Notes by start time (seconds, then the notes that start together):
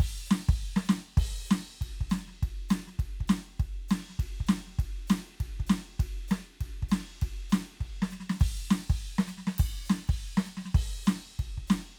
0.01 kick, crash
0.28 hi-hat pedal
0.32 snare
0.50 kick, crash
0.77 snare
0.86 hi-hat pedal
0.90 snare
1.18 kick, crash
1.47 hi-hat pedal
1.52 snare, ride
1.70 snare
1.82 kick, ride
2.02 kick
2.11 snare, hi-hat pedal, ride
2.29 snare
2.44 kick, ride
2.70 snare, hi-hat pedal, ride
2.88 snare
3.00 kick, ride
3.22 kick
3.29 snare, hi-hat pedal, ride
3.45 snare
3.61 kick, ride
3.90 snare, hi-hat pedal, ride
4.11 snare
4.20 kick, ride
4.41 kick
4.48 snare, hi-hat pedal, ride
4.68 snare
4.80 kick, ride
5.08 snare, hi-hat pedal, ride
5.28 cross-stick
5.41 kick, ride
5.61 kick
5.68 snare, hi-hat pedal, ride
6.01 kick, ride
6.29 snare, hi-hat pedal, ride
6.62 kick, ride
6.84 kick
6.90 snare, hi-hat pedal, ride
7.23 kick, ride
7.51 snare, hi-hat pedal, ride
7.82 kick, ride
8.03 snare
8.11 snare, hi-hat pedal
8.21 snare
8.31 snare
8.41 kick, crash
8.71 snare, hi-hat pedal
8.91 kick, crash
9.20 snare
9.29 snare, hi-hat pedal
9.39 snare
9.48 snare
9.60 kick, crash
9.87 hi-hat pedal
9.91 snare
10.09 kick, crash
10.38 snare
10.46 snare, hi-hat pedal
10.58 snare
10.67 snare
10.76 kick, crash
11.06 snare, hi-hat pedal, ride
11.22 snare
11.40 kick, ride
11.59 kick
11.69 snare, hi-hat pedal, ride
11.82 cross-stick